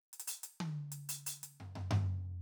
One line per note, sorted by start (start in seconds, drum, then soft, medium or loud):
0.13 closed hi-hat medium
0.20 closed hi-hat medium
0.27 closed hi-hat loud
0.43 closed hi-hat medium
0.60 high tom loud
0.92 closed hi-hat medium
1.09 closed hi-hat loud
1.26 closed hi-hat loud
1.43 closed hi-hat medium
1.60 floor tom medium
1.75 floor tom medium
1.91 floor tom loud